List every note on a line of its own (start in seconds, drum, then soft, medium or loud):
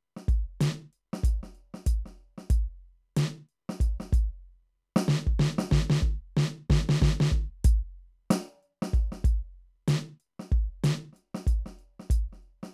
0.17 snare soft
0.28 kick medium
0.28 closed hi-hat soft
0.61 closed hi-hat medium
0.61 snare loud
0.93 closed hi-hat soft
1.13 snare medium
1.24 closed hi-hat medium
1.24 kick medium
1.43 snare soft
1.55 closed hi-hat soft
1.74 snare soft
1.87 closed hi-hat loud
1.87 kick medium
2.06 snare soft
2.38 snare soft
2.50 closed hi-hat medium
2.50 kick medium
3.17 closed hi-hat medium
3.17 snare loud
3.49 closed hi-hat soft
3.69 snare medium
3.80 closed hi-hat medium
3.80 kick medium
4.00 snare soft
4.13 closed hi-hat medium
4.13 kick medium
4.96 snare loud
5.06 snare loud
5.06 hi-hat pedal soft
5.27 kick medium
5.40 snare loud
5.59 snare medium
5.72 kick medium
5.72 snare loud
5.90 snare loud
6.02 kick medium
6.07 snare soft
6.37 snare loud
6.70 kick medium
6.70 snare loud
6.89 snare loud
7.02 kick medium
7.02 snare loud
7.20 snare loud
7.32 kick medium
7.65 closed hi-hat loud
7.65 kick medium
8.31 closed hi-hat loud
8.31 snare loud
8.63 closed hi-hat soft
8.82 snare medium
8.94 kick medium
8.94 closed hi-hat soft
9.12 snare soft
9.25 closed hi-hat medium
9.25 kick medium
9.88 closed hi-hat medium
9.88 snare loud
10.20 closed hi-hat soft
10.40 snare soft
10.52 kick medium
10.52 closed hi-hat soft
10.84 closed hi-hat medium
10.84 snare loud
11.13 snare soft
11.13 closed hi-hat soft
11.35 snare medium
11.47 closed hi-hat medium
11.47 kick medium
11.66 snare soft
11.79 closed hi-hat soft
12.00 snare soft
12.10 closed hi-hat medium
12.10 kick medium
12.33 snare soft
12.43 closed hi-hat soft
12.63 snare soft